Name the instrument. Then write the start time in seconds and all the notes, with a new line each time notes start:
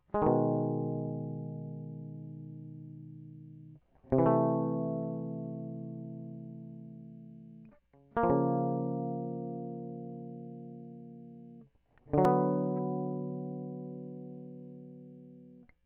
electric guitar
0.15 G#3
0.23 D#3
0.28 B2
4.14 C3
4.19 E3
4.26 A3
8.17 A#3
8.24 F3
8.31 C#3
12.15 D3 F#3
12.26 B3